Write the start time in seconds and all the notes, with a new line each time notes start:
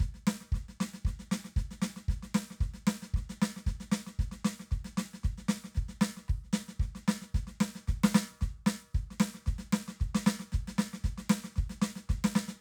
0.00 kick, snare
0.15 snare
0.27 snare
0.41 snare
0.52 kick, snare
0.69 snare
0.81 snare
0.94 snare
1.05 kick, snare
1.20 snare
1.32 snare
1.45 snare
1.57 kick, snare
1.71 snare
1.82 snare
1.97 snare
2.09 kick, snare
2.23 snare
2.35 snare
2.51 snare
2.61 kick, snare
2.74 snare
2.87 snare
3.03 snare
3.14 kick, snare
3.30 snare
3.42 snare
3.57 snare
3.67 kick, snare
3.80 snare
3.92 snare
4.07 snare
4.19 kick, snare
4.32 snare
4.45 snare
4.60 snare
4.71 kick, snare
4.85 snare
4.98 snare
5.14 snare
5.25 kick
5.38 snare
5.49 snare
5.64 snare
5.75 kick, snare
5.89 snare
6.01 snare
6.17 snare
6.29 kick, cross-stick
6.44 snare
6.53 snare
6.69 snare
6.80 kick, snare
6.95 snare
7.08 snare
7.22 snare
7.35 kick, snare
7.47 snare
7.61 snare
7.75 snare
7.88 kick, snare
8.04 snare
8.15 snare
8.32 snare
8.41 kick, snare
8.67 snare
8.95 kick, snare
9.11 snare
9.20 snare
9.35 snare
9.46 kick, snare
9.59 snare
9.73 snare
9.88 snare
10.00 kick, snare
10.15 snare
10.27 snare
10.40 snare
10.52 kick, snare
10.68 snare
10.79 snare
10.94 snare
11.04 kick, snare
11.18 snare
11.30 snare
11.44 snare
11.56 kick, snare
11.70 snare
11.82 snare
11.96 snare
12.09 kick, snare
12.24 snare
12.36 snare
12.48 snare